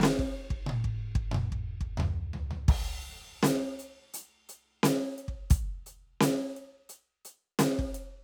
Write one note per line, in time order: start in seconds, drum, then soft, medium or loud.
0.01 snare loud
0.04 snare loud
0.20 kick medium
0.51 kick medium
0.51 snare soft
0.67 high tom loud
0.70 high tom loud
0.85 kick medium
1.16 kick loud
1.16 snare soft
1.32 mid tom loud
1.32 high tom loud
1.53 kick medium
1.81 kick medium
1.98 floor tom loud
1.98 mid tom loud
2.34 floor tom medium
2.52 floor tom medium
2.69 kick loud
2.69 crash loud
3.01 open hi-hat soft
3.43 closed hi-hat loud
3.43 snare loud
3.80 closed hi-hat medium
4.14 closed hi-hat loud
4.50 closed hi-hat medium
4.84 closed hi-hat loud
4.84 snare loud
5.19 closed hi-hat medium
5.29 kick medium
5.51 closed hi-hat loud
5.51 kick loud
5.87 closed hi-hat medium
6.21 closed hi-hat loud
6.21 snare loud
6.57 closed hi-hat soft
6.90 closed hi-hat medium
7.26 closed hi-hat medium
7.60 closed hi-hat loud
7.60 snare loud
7.79 kick medium
7.95 closed hi-hat medium